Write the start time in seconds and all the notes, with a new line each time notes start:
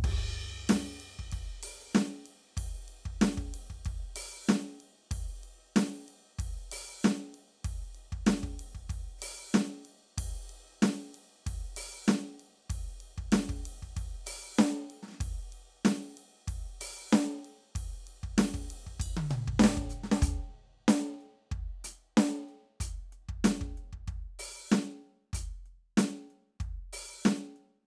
0.01 kick, hi-hat pedal, ride
0.31 ride
0.67 snare, hi-hat pedal, ride
1.00 ride
1.19 kick
1.32 kick, ride
1.63 open hi-hat, ride
1.95 snare, hi-hat pedal, ride
2.26 ride
2.57 kick, ride
2.88 ride
3.06 kick
3.21 snare, ride
3.38 kick
3.54 ride
3.70 kick
3.85 kick, ride
4.11 hi-hat pedal
4.16 open hi-hat, ride
4.49 snare, hi-hat pedal, ride
4.80 ride
5.11 kick, ride
5.44 ride
5.76 snare, ride
6.08 ride
6.39 kick, ride
6.72 open hi-hat, ride
7.04 snare, hi-hat pedal, ride
7.34 ride
7.65 kick, ride
7.95 ride
8.12 kick
8.27 snare, ride
8.43 kick
8.60 ride
8.75 kick
8.90 kick, ride
9.18 open hi-hat, hi-hat pedal, ride
9.54 snare, hi-hat pedal, ride
9.85 ride
10.18 kick, ride
10.50 ride
10.82 snare, ride
11.15 ride
11.47 kick, ride
11.77 open hi-hat, ride
12.08 snare, hi-hat pedal, ride
12.40 ride
12.70 kick, ride
13.01 ride
13.18 kick
13.32 snare, ride
13.49 kick
13.66 ride
13.83 kick
13.97 kick, ride
14.24 open hi-hat, hi-hat pedal, ride
14.59 snare, hi-hat pedal, ride
14.90 ride
15.03 snare
15.08 snare
15.11 snare
15.14 snare
15.21 kick, ride
15.53 ride
15.85 snare, ride
16.17 ride
16.48 kick, ride
16.81 open hi-hat, ride
17.13 snare, hi-hat pedal, ride
17.45 ride
17.75 kick, ride
18.07 ride
18.23 kick
18.37 snare, hi-hat pedal, ride
18.54 kick
18.67 hi-hat pedal, ride
18.87 kick
19.00 kick, ride bell
19.17 high tom
19.30 hi-hat pedal, mid tom
19.48 kick
19.60 snare, hi-hat pedal
19.64 snare
19.77 kick
19.90 hi-hat pedal
20.04 snare
20.12 snare
20.22 closed hi-hat, kick
20.88 closed hi-hat, snare
21.21 closed hi-hat
21.52 kick, closed hi-hat
21.84 open hi-hat
22.17 snare, hi-hat pedal
22.49 closed hi-hat
22.80 closed hi-hat, kick
23.13 closed hi-hat
23.29 kick
23.44 closed hi-hat, snare
23.61 kick
23.78 closed hi-hat
23.93 kick
24.08 kick, closed hi-hat
24.39 open hi-hat
24.72 open hi-hat, snare, hi-hat pedal
25.33 closed hi-hat, kick
25.66 closed hi-hat
25.98 closed hi-hat, snare
26.30 closed hi-hat
26.60 kick, closed hi-hat
26.93 open hi-hat
27.25 open hi-hat, snare, hi-hat pedal
27.56 closed hi-hat